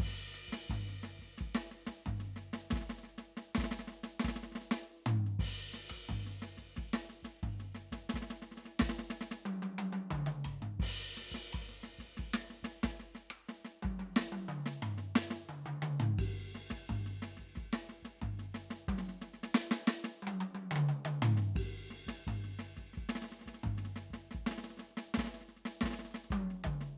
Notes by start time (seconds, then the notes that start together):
0.01 kick, crash
0.35 cross-stick
0.49 kick
0.53 snare
0.71 kick, floor tom
0.89 snare
1.04 snare, hi-hat pedal
1.20 kick, snare
1.38 kick, snare
1.55 snare
1.70 snare, hi-hat pedal
1.87 kick, snare
2.07 kick, floor tom
2.21 snare
2.37 snare, hi-hat pedal
2.54 snare
2.71 kick, snare
2.76 snare
2.82 kick, snare
2.90 snare
2.99 snare
3.04 snare
3.19 snare
3.38 snare
3.56 kick, snare
3.60 snare
3.64 snare
3.72 snare
3.80 snare
3.88 snare
3.92 snare
4.04 snare
4.20 snare
4.25 kick, snare
4.29 snare
4.37 snare
4.44 snare
4.53 snare
4.56 snare
4.62 snare
4.72 snare
5.07 floor tom
5.27 snare
5.40 kick, snare, crash
5.74 snare
5.90 kick, cross-stick
6.10 kick, floor tom
6.27 snare
6.43 snare, hi-hat pedal
6.58 kick, snare
6.77 kick, snare
6.94 snare
7.05 hi-hat pedal
7.10 snare
7.24 kick, snare
7.44 kick, floor tom
7.60 snare
7.75 snare, hi-hat pedal
7.93 kick, snare
8.10 snare
8.15 kick, snare
8.23 snare
8.31 snare
8.43 snare
8.52 snare
8.58 snare
8.61 snare
8.66 snare
8.80 kick, snare
8.90 kick, snare
8.99 snare
9.11 snare
9.22 snare
9.32 snare
9.46 high tom
9.63 high tom
9.79 high tom
9.93 high tom
10.11 kick, mid tom
10.27 mid tom
10.45 kick, floor tom
10.63 floor tom
10.80 kick, crash
11.17 snare, hi-hat pedal
11.32 kick, snare
11.54 kick, floor tom
11.69 snare
11.84 snare, hi-hat pedal
11.99 kick, snare
12.18 kick, snare
12.34 snare
12.50 snare, hi-hat pedal
12.64 kick, snare
12.84 kick, snare
13.00 snare
13.16 snare, hi-hat pedal
13.31 cross-stick
13.49 snare
13.65 snare
13.83 kick, high tom
13.95 kick
14.00 high tom
14.17 snare
14.22 snare
14.33 high tom
14.49 mid tom
14.67 snare
14.83 floor tom
14.98 snare
15.16 snare
15.31 snare
15.50 mid tom
15.67 mid tom
15.83 mid tom
16.01 floor tom
16.20 kick, ride
16.24 hi-hat pedal
16.55 snare
16.71 kick, snare
16.90 kick, floor tom
17.07 snare
17.23 snare, hi-hat pedal
17.37 kick, snare
17.56 kick, snare
17.74 snare
17.88 snare, hi-hat pedal
18.03 kick, snare
18.22 kick, floor tom
18.40 snare
18.55 snare, hi-hat pedal
18.71 snare
18.89 kick, high tom
18.94 kick, hi-hat pedal
18.99 snare
19.09 snare
19.22 snare
19.34 snare
19.44 snare
19.55 snare
19.72 snare
19.88 snare
20.05 snare
20.23 high tom
20.28 high tom
20.41 high tom
20.55 high tom
20.72 mid tom
20.77 mid tom
20.89 mid tom
21.06 mid tom
21.23 floor tom
21.38 snare
21.56 kick, ride
21.91 snare
22.07 kick, snare
22.28 kick, floor tom
22.45 snare
22.60 snare
22.64 hi-hat pedal
22.77 kick, snare
22.94 snare
22.98 kick
23.10 snare
23.16 snare
23.22 snare
23.24 snare
23.30 snare, hi-hat pedal
23.40 snare
23.42 snare
23.47 kick, snare
23.55 snare
23.64 kick, floor tom
23.79 snare
23.85 snare
23.97 snare, hi-hat pedal
24.11 kick, snare
24.32 kick, snare
24.41 kick
24.47 snare
24.52 snare
24.57 snare
24.59 snare
24.64 snare
24.71 snare
24.78 snare
24.80 snare
24.84 snare
24.91 snare
24.98 snare
25.15 kick, snare
25.20 snare
25.25 snare
25.28 snare
25.31 snare
25.35 snare
25.42 snare
25.49 snare
25.57 snare
25.63 snare
25.66 snare
25.82 kick, snare
25.86 snare
25.91 snare
25.94 snare
26.00 snare
26.05 snare
26.11 snare
26.15 snare
26.25 snare
26.31 kick, snare, high tom
26.36 hi-hat pedal
26.51 snare
26.55 snare
26.65 kick, mid tom
26.76 kick
26.81 snare